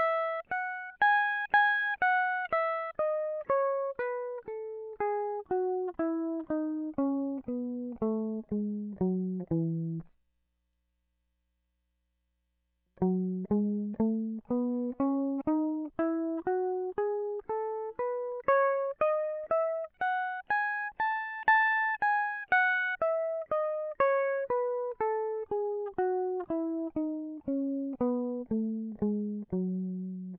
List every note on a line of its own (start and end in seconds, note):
0.00 0.43 E5
0.52 0.93 F#5
1.02 1.48 G#5
1.54 1.97 G#5
2.02 2.48 F#5
2.53 2.93 E5
2.99 3.44 D#5
3.50 3.94 C#5
3.99 4.42 B4
4.48 4.98 A4
5.01 5.44 G#4
5.51 5.93 F#4
6.00 6.46 E4
6.51 6.94 D#4
6.99 7.43 C#4
7.49 7.98 B3
8.03 8.44 A3
8.53 8.97 G#3
9.02 9.46 F#3
9.53 10.04 E3
13.03 13.48 F#3
13.52 13.97 G#3
14.01 14.42 A3
14.51 14.95 B3
15.01 15.44 C#4
15.48 15.90 D#4
15.99 16.43 E4
16.47 16.95 F#4
16.98 17.43 G#4
17.50 17.94 A4
17.99 18.43 B4
18.49 18.94 C#5
19.02 19.49 D#5
19.51 19.88 E5
20.02 20.43 F#5
20.51 20.93 G#5
21.00 21.46 A5
21.48 21.99 A5
22.02 22.46 G#5
22.52 22.97 F#5
23.02 23.45 E5
23.52 23.95 D#5
24.01 24.48 C#5
24.50 24.95 B4
25.01 25.47 A4
25.52 25.93 G#4
25.99 26.46 F#4
26.50 26.91 E4
26.97 27.43 D#4
27.48 27.98 C#4
28.01 28.46 B3
28.52 28.98 A3
29.03 29.47 G#3
29.54 30.39 F#3